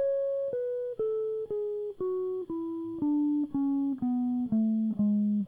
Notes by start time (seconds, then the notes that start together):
0.00 C#5
0.54 B4
1.00 A4
1.51 G#4
2.01 F#4
2.50 E4
3.03 D4
3.55 C#4
4.03 B3
4.53 A3
5.00 G#3